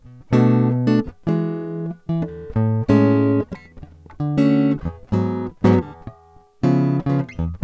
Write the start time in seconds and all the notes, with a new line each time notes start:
0.33 B2 A3 D4 F#4
0.88 A3 D4 F#4
1.28 E3 G#3 F#4
2.10 E3
2.58 A2
2.89 A2 G#3 C#4 E4
4.21 D3
4.38 A3 C#4 F#4
4.87 E2
5.13 G#2 F#3 B3
5.65 G#2 F#3 B3 D4
6.64 C#3 F3 B3 E4
7.07 C#3 F3 B3
7.40 E2